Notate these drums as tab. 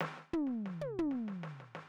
HH |p-----------|
SD |oo-oo--ooooo|
T1 |-----o------|
FT |--o---o-----|